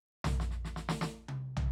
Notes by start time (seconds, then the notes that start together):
0.24 snare, floor tom
0.40 snare
0.51 snare
0.65 snare
0.76 snare
0.89 snare
1.01 snare
1.28 high tom
1.57 floor tom